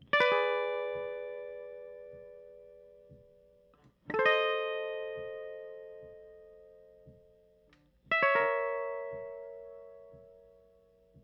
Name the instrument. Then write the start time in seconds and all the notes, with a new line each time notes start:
electric guitar
0.14 D5
0.21 B4
0.32 G#4
4.11 D4 A4
4.19 C5
4.26 D#5
8.12 E5
8.23 C#5
8.36 A#4